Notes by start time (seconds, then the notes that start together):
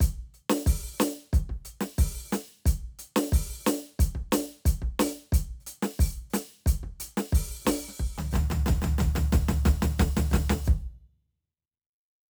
0.01 closed hi-hat, kick
0.34 closed hi-hat
0.50 snare
0.67 open hi-hat, kick
0.98 closed hi-hat, snare, hi-hat pedal
1.33 closed hi-hat, kick
1.50 kick, crash
1.65 closed hi-hat
1.81 snare
1.99 open hi-hat, kick
2.31 closed hi-hat, snare, hi-hat pedal
2.66 closed hi-hat, kick
2.99 closed hi-hat
3.17 snare
3.33 open hi-hat, kick
3.65 closed hi-hat, snare, hi-hat pedal
4.00 closed hi-hat, kick
4.15 kick
4.32 closed hi-hat, snare, hi-hat pedal
4.66 open hi-hat, kick
4.82 kick
5.00 open hi-hat, snare
5.08 hi-hat pedal
5.33 closed hi-hat, kick
5.61 hi-hat pedal
5.67 closed hi-hat
5.83 snare
6.00 open hi-hat, kick
6.31 snare, hi-hat pedal
6.35 closed hi-hat
6.67 closed hi-hat, kick
6.84 kick
7.00 closed hi-hat
7.18 snare
7.33 open hi-hat, kick
7.66 open hi-hat, kick, snare
7.89 snare
8.00 kick
8.18 snare, floor tom
8.32 kick, snare, hi-hat pedal
8.36 floor tom
8.51 snare, floor tom
8.67 kick, snare, floor tom, hi-hat pedal
8.82 snare, floor tom
8.99 kick, snare, floor tom, hi-hat pedal
9.16 snare, floor tom
9.33 kick, snare, floor tom, hi-hat pedal
9.49 snare, floor tom
9.66 kick, snare, floor tom, hi-hat pedal
9.83 snare, floor tom
9.99 kick, snare, hi-hat pedal, floor tom
10.17 snare, floor tom
10.30 kick, snare, floor tom, hi-hat pedal
10.50 snare, floor tom
10.65 kick, hi-hat pedal